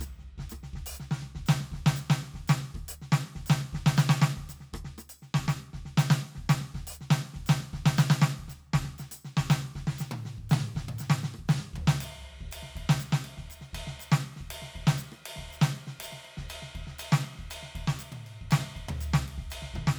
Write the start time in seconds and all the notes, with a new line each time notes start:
0.01 cross-stick, percussion
0.19 snare
0.38 kick, snare
0.44 kick
0.50 cross-stick, percussion
0.64 snare
0.74 kick, snare
0.79 kick
0.86 percussion
0.95 percussion
1.00 snare
1.11 snare
1.22 snare
1.35 kick, snare
1.43 kick, percussion
1.49 snare
1.61 snare
1.72 kick, snare
1.78 kick
1.86 snare
1.96 snare, percussion
2.10 snare
2.23 snare
2.34 kick, snare
2.48 snare, percussion
2.62 snare
2.75 kick, cross-stick
2.80 kick
2.89 percussion
2.92 percussion
3.02 snare
3.12 snare
3.24 snare
3.36 kick, snare
3.46 snare, percussion
3.61 snare
3.73 kick, snare
3.79 kick
3.86 snare
3.98 snare, percussion
4.09 snare
4.22 snare
4.36 kick, snare
4.49 snare, percussion
4.61 snare
4.74 kick, cross-stick
4.79 kick
4.85 snare
4.98 cross-stick, percussion
5.10 percussion
5.22 snare
5.34 snare
5.39 kick
5.48 snare, percussion
5.62 snare
5.74 kick, snare
5.86 snare
5.98 snare, percussion
6.11 snare
6.18 snare
6.23 snare
6.35 kick, snare
6.50 snare, percussion
6.61 snare
6.75 kick, snare
6.80 kick
6.87 percussion
6.94 percussion
7.01 snare
7.11 snare
7.22 snare
7.34 kick, snare
7.44 kick, percussion
7.49 snare
7.61 snare
7.73 kick, snare
7.79 kick
7.86 snare
7.98 snare, percussion
8.10 snare
8.22 snare
8.36 kick, snare
8.48 snare, percussion
8.63 snare
8.74 kick, snare
8.85 snare
8.99 snare, percussion
9.12 percussion
9.25 snare
9.37 kick, snare
9.50 snare, percussion
9.62 snare
9.76 kick, snare
9.87 snare
9.99 snare, percussion
10.12 high tom
10.26 snare
10.38 kick
10.50 snare, high tom, percussion
10.76 kick, snare
10.89 high tom
10.99 snare, percussion
11.10 snare
11.21 snare, percussion
11.34 cross-stick
11.39 kick
11.49 snare, percussion
11.60 snare
11.74 kick, floor tom
11.79 kick
11.88 snare
11.95 snare
12.01 ride, percussion
12.41 kick
12.52 ride, percussion
12.63 snare
12.76 kick, ride
12.82 kick
12.89 snare
13.00 ride, percussion
13.13 snare
13.25 ride
13.38 kick, snare
13.50 ride, percussion
13.62 snare
13.74 kick, ride bell
13.79 kick
13.87 snare
14.00 ride, percussion
14.12 snare
14.37 snare
14.41 kick
14.51 ride, percussion
14.62 snare
14.76 kick, ride
14.87 snare
14.98 ride, percussion
15.12 cross-stick
15.26 ride
15.36 kick, snare
15.51 ride, percussion
15.62 snare
15.76 ride
15.87 snare
15.99 kick, ride
16.03 percussion
16.13 snare
16.25 ride
16.38 kick, snare
16.49 ride bell, percussion
16.63 snare
16.75 kick, ride
16.81 kick
16.87 snare
16.99 ride bell, percussion
17.12 snare
17.19 snare
17.25 ride
17.36 kick, snare
17.51 ride bell, percussion
17.63 snare
17.75 kick, ride
17.81 kick
17.88 snare
17.99 ride, percussion
18.12 high tom, percussion
18.27 ride bell
18.42 kick
18.51 snare, ride bell, percussion
18.59 snare
18.76 kick, ride bell
18.89 floor tom
19.01 ride bell, percussion
19.14 snare
19.28 ride
19.38 kick, snare
19.51 ride bell, percussion
19.62 snare
19.74 kick, mid tom
19.80 kick
19.88 snare